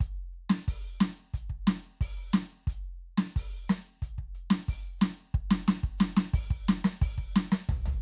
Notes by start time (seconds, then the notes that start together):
0.01 closed hi-hat, kick
0.34 closed hi-hat
0.50 snare
0.68 open hi-hat, kick
1.00 snare, closed hi-hat, hi-hat pedal
1.34 closed hi-hat, kick
1.50 kick
1.68 snare, closed hi-hat
2.01 open hi-hat, kick
2.33 snare, hi-hat pedal
2.68 closed hi-hat, kick
3.03 closed hi-hat
3.18 snare
3.37 open hi-hat, kick
3.68 closed hi-hat, snare, hi-hat pedal
4.03 closed hi-hat, kick
4.19 kick
4.35 closed hi-hat
4.51 snare
4.69 open hi-hat, kick
4.99 snare, hi-hat pedal
5.03 closed hi-hat
5.35 kick
5.51 snare
5.67 snare, hi-hat pedal
5.84 kick
5.99 snare, hi-hat pedal
6.17 snare
6.34 open hi-hat, kick
6.51 kick
6.68 snare, hi-hat pedal
6.85 snare
7.02 open hi-hat, kick
7.18 kick
7.36 snare
7.52 snare
7.69 kick, floor tom
7.86 floor tom